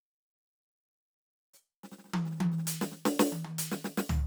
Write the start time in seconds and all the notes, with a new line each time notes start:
1.54 hi-hat pedal
1.83 snare
1.92 snare
1.98 snare
2.04 snare
2.08 snare
2.14 high tom
2.25 snare
2.31 snare
2.36 snare
2.40 high tom
2.52 snare
2.58 snare
2.65 snare, closed hi-hat
2.81 snare
3.05 snare
3.19 snare
3.32 high tom
3.45 high tom
3.58 closed hi-hat
3.72 snare
3.84 snare
3.97 snare
4.09 floor tom